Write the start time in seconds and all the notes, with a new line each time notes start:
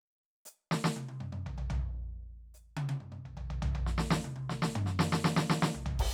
0.45 hi-hat pedal
0.71 snare
0.84 snare
0.96 high tom
1.08 high tom
1.20 mid tom
1.32 mid tom
1.46 floor tom
1.58 floor tom
1.70 floor tom
2.54 hi-hat pedal
2.77 high tom
2.89 high tom
3.00 mid tom
3.12 mid tom
3.25 floor tom
3.37 floor tom
3.50 floor tom
3.62 floor tom
3.75 floor tom
3.86 snare
3.98 snare
4.10 snare
4.24 high tom
4.36 high tom
4.49 snare
4.62 snare
4.75 mid tom
4.86 snare
4.99 snare
5.12 snare
5.24 snare
5.36 snare
5.50 snare
5.62 snare
5.74 floor tom
5.86 floor tom
5.99 kick, crash